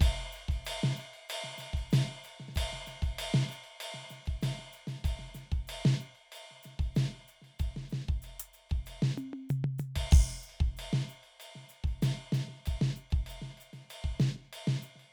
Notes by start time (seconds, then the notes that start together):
0.01 kick, hi-hat pedal, ride
0.33 hi-hat pedal, ride
0.49 kick, ride
0.65 hi-hat pedal, ride
0.84 snare
0.97 hi-hat pedal, ride
1.14 ride
1.29 hi-hat pedal, ride
1.44 snare
1.58 snare, hi-hat pedal, ride
1.74 kick, ride
1.91 snare, hi-hat pedal, ride
2.12 snare
2.24 hi-hat pedal, ride
2.40 snare
2.49 snare
2.55 kick, hi-hat pedal, ride
2.73 snare
2.87 snare, hi-hat pedal, ride
3.03 kick, ride
3.19 hi-hat pedal, ride
3.34 snare
3.49 hi-hat pedal, ride
3.64 ride
3.81 hi-hat pedal, ride
3.94 snare
4.10 snare, hi-hat pedal, ride
4.26 kick, ride
4.42 snare, hi-hat pedal, ride
4.59 snare
4.73 hi-hat pedal, ride
4.88 snare, ride
5.05 kick, hi-hat pedal, ride bell
5.19 snare
5.35 snare, hi-hat pedal, ride
5.52 kick, ride
5.68 hi-hat pedal, ride bell
5.86 snare
6.01 hi-hat pedal
6.15 ride
6.32 hi-hat pedal, ride
6.51 snare
6.63 snare, hi-hat pedal, ride
6.80 kick, ride
6.96 snare, hi-hat pedal, ride bell
7.11 snare
7.14 snare
7.28 hi-hat pedal, ride
7.42 snare, ride
7.60 kick, hi-hat pedal, ride bell
7.77 snare
7.90 snare, hi-hat pedal, ride
8.09 kick, ride
8.22 hi-hat pedal, ride bell
8.40 open hi-hat
8.54 hi-hat pedal, ride
8.70 kick, ride
8.86 hi-hat pedal, ride bell
9.03 snare
9.18 hi-hat pedal, high tom
9.34 high tom
9.50 floor tom, hi-hat pedal
9.65 floor tom
9.79 floor tom, hi-hat pedal
9.96 kick, ride
10.12 kick, hi-hat pedal, crash
10.43 hi-hat pedal
10.50 ride
10.61 kick, ride
10.77 hi-hat pedal, ride bell
10.93 snare
11.08 hi-hat pedal, ride
11.24 ride
11.40 hi-hat pedal, ride bell
11.56 snare
11.69 hi-hat pedal, ride
11.84 kick, ride
12.02 snare, hi-hat pedal, ride
12.33 snare, hi-hat pedal, ride bell
12.49 snare
12.66 kick, hi-hat pedal, ride
12.82 snare
12.96 hi-hat pedal
13.11 kick, ride
13.27 hi-hat pedal, ride bell
13.42 snare
13.58 snare, hi-hat pedal, ride
13.74 snare, ride
13.90 hi-hat pedal, ride
14.04 kick
14.20 snare, hi-hat pedal
14.36 snare
14.53 hi-hat pedal, ride bell
14.68 snare
14.83 hi-hat pedal, ride
14.96 snare, ride